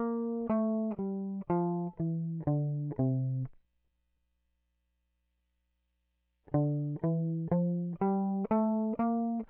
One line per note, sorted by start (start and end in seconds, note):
0.00 0.49 A#3
0.50 0.96 A3
0.99 1.45 G3
1.50 1.91 F3
2.00 2.45 E3
2.48 2.94 D3
3.00 3.48 C3
6.55 6.99 D3
7.04 7.50 E3
7.52 7.98 F3
8.02 8.49 G3
8.51 8.97 A3
8.99 9.45 A#3